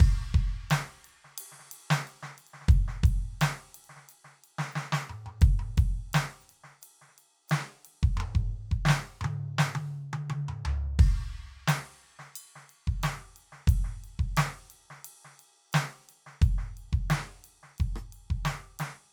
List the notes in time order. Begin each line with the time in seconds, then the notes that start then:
0.01 kick, crash
0.35 kick
0.71 snare, ride
1.05 ride
1.25 snare
1.38 hi-hat pedal, ride
1.52 snare
1.60 snare
1.66 snare
1.72 ride
1.81 ride
1.91 snare
1.99 hi-hat pedal
2.08 ride
2.23 snare
2.39 ride
2.47 ride
2.54 snare
2.62 snare
2.69 kick, ride
2.88 snare
3.04 kick, ride
3.41 snare, hi-hat pedal, ride
3.75 ride
3.85 ride
3.90 snare
3.97 snare
4.10 hi-hat pedal, ride
4.25 snare
4.44 ride
4.59 snare
4.72 hi-hat pedal
4.76 snare
4.93 snare
5.10 mid tom
5.27 mid tom
5.42 kick, ride
5.60 mid tom
5.78 kick, ride
6.14 snare, hi-hat pedal, ride
6.41 hi-hat pedal
6.50 ride
6.64 snare
6.82 hi-hat pedal, ride
7.02 snare
7.10 snare
7.19 ride
7.48 snare, hi-hat pedal, ride
7.85 ride
8.03 kick
8.18 mid tom
8.21 mid tom
8.36 kick
8.72 kick
8.86 kick, snare
8.89 snare
9.22 mid tom, high tom
9.59 snare
9.76 high tom
10.14 high tom
10.30 high tom
10.49 mid tom
10.66 floor tom
11.00 kick, crash
11.68 snare, ride
12.20 snare
12.36 ride bell
12.56 snare
12.70 ride
12.88 kick
13.04 snare, ride
13.15 snare
13.37 ride
13.53 snare
13.68 kick, ride
13.85 snare
14.04 ride
14.20 kick
14.37 snare, ride
14.71 ride
14.91 snare
15.05 ride
15.25 snare
15.40 ride
15.73 snare, hi-hat pedal, ride
16.10 ride
16.27 snare
16.42 kick, ride
16.59 snare
16.78 ride
16.93 kick
17.11 snare, ride
17.45 ride
17.64 snare
17.79 kick, ride
17.96 cross-stick
18.13 ride
18.31 kick
18.46 snare, ride
18.80 snare, ride